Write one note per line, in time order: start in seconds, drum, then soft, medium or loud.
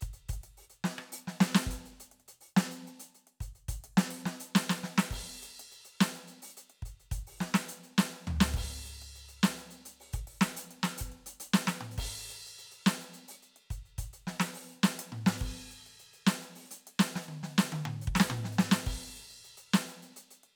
0.01 closed hi-hat medium
0.01 kick soft
0.13 closed hi-hat medium
0.29 closed hi-hat medium
0.29 kick soft
0.33 closed hi-hat medium
0.41 hi-hat pedal soft
0.41 open hi-hat medium
0.57 open hi-hat medium
0.64 hi-hat pedal soft
0.70 closed hi-hat medium
0.84 snare medium
0.98 cross-stick medium
1.12 open hi-hat loud
1.27 snare medium
1.41 snare loud
1.55 snare loud
1.60 hi-hat pedal medium
1.66 kick soft
1.70 closed hi-hat medium
1.70 kick soft
1.85 closed hi-hat soft
2.00 closed hi-hat medium
2.12 closed hi-hat soft
2.20 closed hi-hat soft
2.28 closed hi-hat medium
2.41 open hi-hat medium
2.57 snare loud
2.71 open hi-hat medium
2.87 open hi-hat medium
2.87 hi-hat pedal soft
3.00 closed hi-hat medium
3.15 closed hi-hat soft
3.27 closed hi-hat soft
3.41 closed hi-hat medium
3.41 kick soft
3.55 closed hi-hat soft
3.68 closed hi-hat loud
3.68 kick soft
3.74 kick soft
3.84 closed hi-hat medium
3.97 snare loud
4.11 open hi-hat medium
4.19 hi-hat pedal soft
4.26 snare medium
4.40 closed hi-hat loud
4.55 snare loud
4.70 snare loud
4.84 snare medium
4.98 snare loud
5.04 hi-hat pedal soft
5.11 kick soft
5.11 crash medium
5.42 closed hi-hat medium
5.60 closed hi-hat medium
5.72 closed hi-hat medium
5.85 closed hi-hat medium
6.01 snare loud
6.15 closed hi-hat medium
6.28 closed hi-hat medium
6.42 open hi-hat loud
6.48 hi-hat pedal soft
6.57 open hi-hat soft
6.57 open hi-hat medium
6.70 closed hi-hat soft
6.82 closed hi-hat medium
6.82 kick soft
7.00 closed hi-hat soft
7.11 closed hi-hat loud
7.11 kick soft
7.17 kick soft
7.27 open hi-hat medium
7.32 open hi-hat soft
7.41 snare medium
7.54 snare loud
7.54 hi-hat pedal soft
7.69 closed hi-hat loud
7.83 open hi-hat medium
7.98 snare loud
8.13 closed hi-hat soft
8.27 floor tom loud
8.41 snare loud
8.52 kick soft
8.52 hi-hat pedal medium
8.57 kick soft
8.57 crash loud
8.72 closed hi-hat soft
8.85 closed hi-hat medium
9.02 closed hi-hat soft
9.15 closed hi-hat medium
9.29 closed hi-hat medium
9.43 snare loud
9.58 closed hi-hat medium
9.71 closed hi-hat medium
9.85 closed hi-hat medium
10.00 open hi-hat medium
10.13 open hi-hat loud
10.13 kick soft
10.13 hi-hat pedal soft
10.19 kick soft
10.23 kick soft
10.23 open hi-hat medium
10.41 snare loud
10.57 closed hi-hat loud
10.71 closed hi-hat medium
10.83 snare loud
10.98 closed hi-hat loud
10.98 kick soft
11.12 closed hi-hat soft
11.26 closed hi-hat loud
11.40 closed hi-hat loud
11.54 snare loud
11.67 snare loud
11.76 snare soft
11.81 mid tom medium
11.91 hi-hat pedal medium
11.98 kick soft
11.98 crash loud
12.04 kick soft
12.30 closed hi-hat medium
12.46 closed hi-hat medium
12.58 closed hi-hat medium
12.71 closed hi-hat medium
12.86 snare loud
13.01 closed hi-hat medium
13.14 closed hi-hat medium
13.28 open hi-hat loud
13.42 closed hi-hat soft
13.56 closed hi-hat soft
13.70 closed hi-hat medium
13.70 kick soft
13.85 closed hi-hat soft
13.98 closed hi-hat loud
13.98 kick soft
14.04 kick soft
14.13 closed hi-hat medium
14.22 open hi-hat soft
14.27 snare medium
14.40 snare loud
14.44 hi-hat pedal soft
14.54 open hi-hat medium
14.68 open hi-hat soft
14.72 hi-hat pedal soft
14.83 snare loud
14.99 closed hi-hat loud
15.12 mid tom medium
15.26 snare loud
15.38 kick soft
15.38 hi-hat pedal medium
15.42 crash medium
15.47 kick soft
15.59 closed hi-hat soft
15.71 closed hi-hat medium
15.86 closed hi-hat soft
15.99 closed hi-hat soft
16.13 closed hi-hat soft
16.27 snare loud
16.42 closed hi-hat medium
16.55 open hi-hat medium
16.68 closed hi-hat loud
16.68 hi-hat pedal soft
16.87 closed hi-hat medium
16.99 snare loud
17.16 snare medium
17.22 hi-hat pedal medium
17.28 high tom medium
17.43 snare medium
17.58 snare loud
17.72 high tom loud
17.85 mid tom medium
18.02 hi-hat pedal medium
18.07 kick medium
18.14 kick soft
18.14 snare loud
18.18 kick soft
18.18 snare loud
18.30 mid tom loud
18.45 snare medium
18.52 hi-hat pedal medium
18.59 snare loud
18.71 snare loud
18.79 cross-stick soft
18.79 hi-hat pedal soft
18.86 kick medium
18.86 crash medium
18.93 kick soft
19.16 closed hi-hat medium
19.30 closed hi-hat soft
19.44 closed hi-hat soft
19.57 closed hi-hat medium
19.74 snare loud
19.89 closed hi-hat medium
20.02 closed hi-hat medium
20.16 open hi-hat medium
20.31 closed hi-hat medium
20.43 closed hi-hat soft